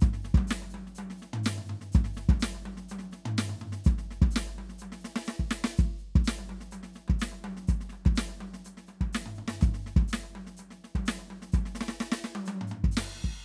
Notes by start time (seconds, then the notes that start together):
0.01 kick, floor tom, hi-hat pedal
0.14 snare
0.21 snare, hi-hat pedal
0.35 kick, high tom
0.48 snare, hi-hat pedal
0.63 high tom
0.70 hi-hat pedal
0.75 high tom
0.87 snare
0.96 hi-hat pedal, high tom
1.11 snare
1.18 hi-hat pedal
1.23 snare
1.34 floor tom
1.44 snare, hi-hat pedal
1.58 floor tom
1.66 floor tom, hi-hat pedal
1.82 snare
1.93 kick, floor tom, hi-hat pedal
2.05 snare
2.14 snare, hi-hat pedal
2.29 kick, high tom
2.40 snare, hi-hat pedal
2.56 high tom
2.62 hi-hat pedal, high tom
2.78 snare
2.89 hi-hat pedal, high tom
2.99 snare
3.12 snare, hi-hat pedal
3.26 floor tom
3.38 snare, hi-hat pedal
3.50 floor tom
3.56 kick, hi-hat pedal
3.62 floor tom
3.73 snare
3.85 kick, hi-hat pedal, high tom
3.99 snare
4.11 snare
4.22 kick, high tom
4.31 hi-hat pedal
4.37 snare
4.48 high tom
4.59 high tom
4.70 snare
4.79 hi-hat pedal, high tom
4.93 snare
5.00 hi-hat pedal
5.05 snare
5.16 snare
5.26 snare, hi-hat pedal
5.40 kick
5.48 snare, hi-hat pedal
5.65 snare
5.78 kick, hi-hat pedal
5.99 hi-hat pedal
6.16 kick
6.25 snare, hi-hat pedal
6.39 high tom
6.47 hi-hat pedal, high tom
6.61 snare
6.72 hi-hat pedal, high tom
6.84 snare
6.94 snare, hi-hat pedal
7.08 kick, high tom
7.20 snare, hi-hat pedal
7.32 high tom
7.41 hi-hat pedal, high tom
7.57 snare
7.68 kick, hi-hat pedal, high tom
7.81 snare
7.90 snare, high tom
8.06 kick, high tom
8.16 snare, hi-hat pedal
8.29 high tom
8.38 hi-hat pedal, high tom
8.54 snare
8.65 hi-hat pedal, high tom
8.78 snare
8.87 snare, hi-hat pedal, high tom
9.02 kick, high tom
9.13 snare, hi-hat pedal
9.27 floor tom
9.34 kick, hi-hat pedal
9.39 floor tom
9.48 snare
9.62 kick, floor tom, hi-hat pedal
9.75 snare
9.82 hi-hat pedal
9.87 snare
9.97 kick, high tom
10.09 hi-hat pedal
10.14 snare
10.24 high tom
10.31 hi-hat pedal
10.36 high tom
10.47 snare
10.57 kick, hi-hat pedal, high tom
10.71 snare
10.80 hi-hat pedal
10.85 snare
10.96 kick, high tom
11.06 snare, hi-hat pedal
11.20 high tom
11.28 hi-hat pedal, high tom
11.43 snare
11.53 kick, hi-hat pedal, high tom
11.66 snare
11.75 kick, snare, hi-hat pedal
11.81 snare
11.89 snare
12.00 snare, hi-hat pedal
12.12 snare
12.22 snare, hi-hat pedal
12.36 high tom
12.46 hi-hat pedal, high tom
12.62 floor tom
12.68 hi-hat pedal
12.72 floor tom
12.85 kick
12.92 hi-hat pedal
12.97 snare, crash
13.25 kick